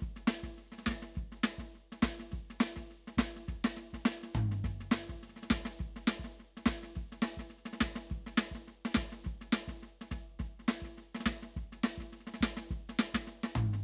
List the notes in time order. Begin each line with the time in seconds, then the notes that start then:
0.01 kick, snare
0.17 snare
0.28 snare, hi-hat pedal
0.44 kick, snare
0.59 snare
0.67 snare
0.71 snare
0.73 snare
0.79 snare
0.84 snare, hi-hat pedal
0.87 kick, snare
0.91 snare
0.96 kick
1.03 snare
1.16 kick, snare
1.24 kick
1.33 snare
1.44 snare, hi-hat pedal
1.59 kick, snare
1.76 snare
1.93 snare
2.03 kick, snare, hi-hat pedal
2.12 kick
2.20 snare
2.32 kick, snare
2.41 kick
2.51 snare
2.60 snare, hi-hat pedal
2.77 kick, snare
2.91 snare
3.08 snare
3.18 kick, snare, hi-hat pedal
3.25 kick
3.37 snare
3.49 kick, snare
3.56 kick
3.65 snare
3.75 snare, hi-hat pedal
3.94 kick, snare
4.06 snare
4.24 snare
4.34 kick, floor tom, hi-hat pedal
4.52 snare
4.65 kick, snare
4.72 kick
4.75 kick
4.81 snare
4.91 snare, hi-hat pedal
5.10 kick, snare
5.16 kick
5.24 snare
5.30 snare
5.35 snare
5.37 snare
5.44 snare
5.50 kick, snare, hi-hat pedal
5.58 kick
5.61 kick
5.66 snare
5.80 kick, snare
5.87 kick
5.97 snare
6.08 snare, hi-hat pedal
6.20 kick
6.25 snare
6.40 snare
6.58 snare
6.66 kick, snare, hi-hat pedal
6.84 snare
6.96 kick, snare
7.04 kick
7.13 snare
7.22 snare, hi-hat pedal
7.38 kick, snare
7.51 snare
7.59 snare
7.66 snare
7.74 snare
7.81 kick, snare, hi-hat pedal
7.89 kick
7.96 snare
8.10 kick, snare
8.19 kick
8.27 snare
8.38 snare, hi-hat pedal
8.52 kick, snare
8.69 snare
8.86 snare
8.95 kick, snare, hi-hat pedal
9.04 kick
9.07 kick
9.13 snare
9.25 kick, snare
9.34 kick
9.42 snare
9.53 snare, hi-hat pedal
9.69 kick, snare
9.84 snare
10.02 snare
10.12 kick, snare, hi-hat pedal
10.18 kick
10.40 kick, snare
10.47 kick
10.60 snare
10.68 snare, hi-hat pedal
10.83 kick, snare
10.99 snare
11.16 snare
11.21 snare
11.26 kick, snare, hi-hat pedal
11.43 snare
11.57 kick, snare
11.64 kick
11.73 snare
11.83 snare, hi-hat pedal
11.99 kick, snare
12.13 snare
12.21 snare
12.28 snare
12.35 snare
12.42 kick, snare, hi-hat pedal
12.48 kick
12.58 snare
12.72 kick, snare
12.90 snare
13.00 snare, hi-hat pedal
13.15 kick, snare
13.28 snare
13.44 snare
13.56 kick, floor tom, hi-hat pedal
13.67 kick
13.74 snare